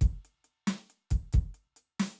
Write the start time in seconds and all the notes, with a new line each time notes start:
0.01 kick, closed hi-hat
0.25 closed hi-hat
0.44 closed hi-hat
0.67 snare, closed hi-hat
0.90 closed hi-hat
1.10 kick, closed hi-hat
1.33 kick, closed hi-hat
1.54 closed hi-hat
1.76 closed hi-hat
1.99 snare, open hi-hat